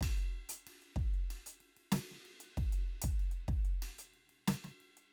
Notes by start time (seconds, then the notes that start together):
0.01 kick, ride bell
0.17 closed hi-hat
0.32 ride
0.49 closed hi-hat
0.67 ride
0.82 closed hi-hat
0.96 kick, ride
1.14 closed hi-hat
1.30 ride bell
1.46 closed hi-hat
1.60 ride
1.77 ride
1.92 snare, ride
2.11 snare
2.25 ride
2.40 closed hi-hat
2.57 kick, cross-stick, floor tom, ride
2.72 closed hi-hat
2.88 ride
3.02 kick, closed hi-hat
3.19 ride bell
3.31 closed hi-hat
3.48 kick, ride
3.65 closed hi-hat
3.82 ride bell
3.98 closed hi-hat
4.14 ride
4.29 ride
4.47 snare, ride bell
4.64 snare
4.80 ride
4.97 closed hi-hat